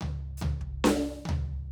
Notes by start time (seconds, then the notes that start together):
0.02 floor tom, high tom
0.37 hi-hat pedal
0.41 floor tom, high tom
0.61 kick
0.84 snare
0.87 snare
1.25 closed hi-hat, floor tom, high tom